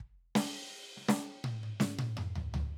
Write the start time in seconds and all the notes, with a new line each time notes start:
0.00 kick
0.35 snare, ride
0.96 snare
1.01 snare
1.04 snare
1.08 snare
1.44 high tom
1.63 high tom
1.80 snare
1.98 open hi-hat, high tom
2.17 mid tom
2.35 floor tom
2.54 floor tom